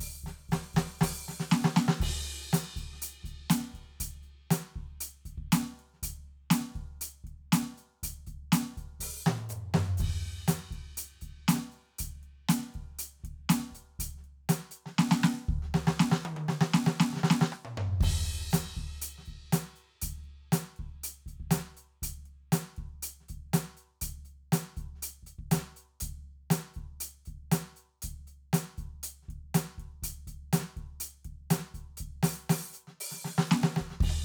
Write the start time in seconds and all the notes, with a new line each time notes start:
0.01 open hi-hat, kick
0.25 open hi-hat, kick, snare
0.50 open hi-hat, kick, snare
0.76 open hi-hat, kick, snare
1.02 open hi-hat, kick, snare
1.29 snare
1.41 snare
1.53 snare
1.65 snare
1.77 snare
1.89 snare
2.01 kick, hi-hat pedal, crash
2.54 closed hi-hat, snare
2.77 closed hi-hat, kick
2.94 snare
3.03 closed hi-hat
3.23 closed hi-hat, kick, snare
3.51 closed hi-hat, snare
3.75 kick, closed hi-hat
4.01 closed hi-hat, kick
4.24 closed hi-hat
4.52 closed hi-hat, snare
4.77 kick
5.02 closed hi-hat
5.26 closed hi-hat, kick
5.39 kick
5.53 closed hi-hat, snare
5.80 closed hi-hat
5.95 snare
6.04 closed hi-hat, kick
6.51 closed hi-hat, snare
6.58 cross-stick
6.76 kick, closed hi-hat
7.02 closed hi-hat
7.25 kick, closed hi-hat
7.53 closed hi-hat, snare
7.79 closed hi-hat
8.04 closed hi-hat, kick
8.28 closed hi-hat, kick
8.53 closed hi-hat, snare
8.78 closed hi-hat, kick
9.01 open hi-hat, kick, snare
9.27 snare, hi-hat pedal, mid tom
9.50 floor tom, hi-hat pedal
9.75 snare, floor tom
9.98 kick, hi-hat pedal, crash
10.49 closed hi-hat, snare
10.72 kick, closed hi-hat
10.98 closed hi-hat
11.22 closed hi-hat, kick
11.49 closed hi-hat, snare
11.54 snare
11.73 closed hi-hat
12.00 closed hi-hat, kick
12.24 closed hi-hat
12.50 closed hi-hat, snare
12.75 kick, closed hi-hat
13.00 closed hi-hat
13.20 snare
13.25 kick, closed hi-hat
13.50 closed hi-hat, snare
13.73 closed hi-hat, kick
14.00 closed hi-hat, kick
14.19 snare
14.25 closed hi-hat
14.50 closed hi-hat, snare
14.72 closed hi-hat
14.87 snare
14.99 snare
15.12 snare
15.25 snare
15.50 kick
15.63 snare
15.75 snare
15.88 snare
16.01 snare
16.13 snare
16.26 high tom
16.38 high tom
16.50 snare
16.62 snare
16.75 snare
16.88 snare
17.01 snare
17.14 snare
17.17 snare
17.25 snare
17.31 snare
17.42 snare
17.53 cross-stick
17.66 mid tom
17.78 floor tom
17.87 kick
18.02 kick, crash
18.51 closed hi-hat, snare, hi-hat pedal
18.78 kick, closed hi-hat
19.03 closed hi-hat
19.19 snare
19.26 closed hi-hat, kick
19.54 closed hi-hat, snare
19.77 closed hi-hat
20.03 closed hi-hat, kick
20.18 snare
20.25 closed hi-hat
20.53 closed hi-hat, snare
20.77 kick, closed hi-hat
21.05 closed hi-hat
21.27 closed hi-hat, kick
21.41 kick
21.51 closed hi-hat, kick, snare
21.57 snare
21.78 closed hi-hat
22.03 closed hi-hat, kick
22.27 closed hi-hat
22.53 closed hi-hat, snare
22.78 kick, closed hi-hat
23.04 closed hi-hat
23.21 snare
23.30 closed hi-hat, kick
23.55 closed hi-hat, snare
23.78 closed hi-hat
24.02 closed hi-hat, kick
24.26 closed hi-hat
24.53 closed hi-hat, snare
24.78 closed hi-hat, kick
24.97 snare
25.04 closed hi-hat
25.24 closed hi-hat, kick
25.40 kick
25.52 closed hi-hat, snare
25.57 snare
25.77 closed hi-hat
26.01 closed hi-hat, kick
26.23 closed hi-hat
26.51 closed hi-hat, snare
26.58 snare
26.75 closed hi-hat, kick
27.01 closed hi-hat
27.26 closed hi-hat, kick
27.53 closed hi-hat, snare
27.77 closed hi-hat
28.03 closed hi-hat, kick
28.28 closed hi-hat
28.54 closed hi-hat, snare
28.79 closed hi-hat, kick
28.88 kick
29.04 closed hi-hat
29.24 snare
29.30 kick, closed hi-hat
29.56 closed hi-hat, snare
29.79 kick, closed hi-hat
30.04 closed hi-hat, kick
30.28 closed hi-hat, kick
30.54 closed hi-hat, snare
30.60 snare
30.78 kick, closed hi-hat
31.01 closed hi-hat
31.26 kick, closed hi-hat
31.51 closed hi-hat, snare
31.57 snare
31.75 closed hi-hat, kick
31.98 open hi-hat, kick
32.24 open hi-hat, snare
32.51 open hi-hat, snare
32.74 closed hi-hat, hi-hat pedal
32.88 snare
33.01 open hi-hat
33.12 snare
33.26 snare
33.39 snare
33.48 hi-hat pedal
33.52 snare
33.64 snare
33.77 snare
33.82 kick
33.92 snare
34.02 kick, crash
34.10 high tom